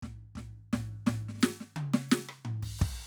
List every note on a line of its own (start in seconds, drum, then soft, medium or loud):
0.02 kick soft
0.02 snare soft
0.02 floor tom medium
0.36 kick soft
0.36 snare medium
0.36 floor tom medium
0.73 kick soft
0.73 snare loud
0.73 floor tom medium
1.07 kick soft
1.07 snare loud
1.07 floor tom loud
1.29 snare soft
1.34 snare soft
1.38 snare soft
1.38 percussion medium
1.43 snare loud
1.61 snare soft
1.76 mid tom loud
1.94 snare loud
2.09 snare loud
2.09 percussion soft
2.29 high tom medium
2.45 floor tom loud
2.63 kick medium
2.63 crash medium
2.79 kick loud
2.79 crash medium